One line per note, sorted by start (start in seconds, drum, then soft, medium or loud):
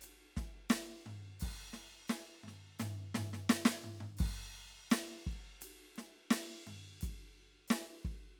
0.01 hi-hat pedal medium
0.01 ride soft
0.36 kick soft
0.36 snare soft
0.69 snare loud
0.69 hi-hat pedal medium
0.69 ride soft
1.06 floor tom medium
1.40 kick soft
1.40 hi-hat pedal medium
1.40 crash medium
1.73 snare soft
2.08 snare medium
2.08 hi-hat pedal soft
2.08 ride soft
2.43 floor tom soft
2.48 snare soft
2.79 snare medium
2.79 floor tom medium
2.79 hi-hat pedal medium
3.14 snare medium
3.14 floor tom medium
3.33 snare soft
3.49 snare loud
3.49 hi-hat pedal medium
3.65 snare loud
3.84 floor tom medium
4.00 floor tom medium
4.17 kick medium
4.17 hi-hat pedal soft
4.17 crash medium
4.90 snare loud
4.90 hi-hat pedal medium
4.90 ride soft
5.27 kick soft
5.31 ride soft
5.61 hi-hat pedal medium
5.61 ride medium
5.81 ride soft
5.96 snare soft
5.96 ride soft
6.31 snare loud
6.31 hi-hat pedal medium
6.31 ride medium
6.67 floor tom soft
6.67 ride soft
7.01 kick soft
7.01 hi-hat pedal medium
7.01 ride soft
7.35 ride soft
7.68 snare loud
7.68 hi-hat pedal medium
7.68 ride medium
8.05 kick soft
8.05 ride soft